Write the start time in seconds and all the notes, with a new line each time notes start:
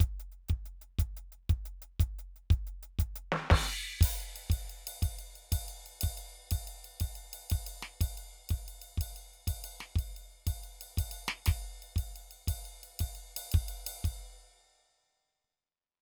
0.01 kick, closed hi-hat
0.21 closed hi-hat
0.33 closed hi-hat
0.49 closed hi-hat, kick
0.66 closed hi-hat
0.82 closed hi-hat
0.99 kick, closed hi-hat
1.18 closed hi-hat
1.33 closed hi-hat
1.50 closed hi-hat, kick
1.66 closed hi-hat
1.83 closed hi-hat
2.01 kick, closed hi-hat
2.20 closed hi-hat
2.37 closed hi-hat
2.51 closed hi-hat, kick
2.68 closed hi-hat
2.84 closed hi-hat
3.00 kick, closed hi-hat
3.16 closed hi-hat
3.33 snare
3.51 kick, snare, crash
4.02 open hi-hat, kick, ride
4.21 ride
4.37 ride
4.51 kick, ride
4.70 ride
4.88 ride
5.03 kick, ride
5.19 ride
5.36 ride
5.53 kick, ride
5.69 ride
5.87 ride
6.02 kick, ride
6.18 ride
6.52 kick, ride
6.68 ride
6.85 ride
7.01 kick, ride
7.16 ride
7.34 ride
7.51 kick, ride
7.67 ride
7.83 snare
8.02 kick, ride
8.18 ride
8.50 kick, ride
8.69 ride
8.82 ride
8.98 kick, ride
9.17 ride
9.34 ride
9.48 kick, ride
9.65 ride
9.81 snare
9.96 kick, ride
10.17 ride
10.32 ride
10.48 kick, ride
10.64 ride
10.82 ride
10.98 kick, ride
11.12 ride
11.29 snare
11.47 kick, snare, ride
11.83 ride
11.97 kick, ride
12.17 ride
12.32 ride
12.48 kick, ride
12.66 ride
12.84 ride
13.00 kick, ride
13.16 ride
13.37 ride
13.53 kick, ride
13.69 ride
13.87 ride
14.05 kick, ride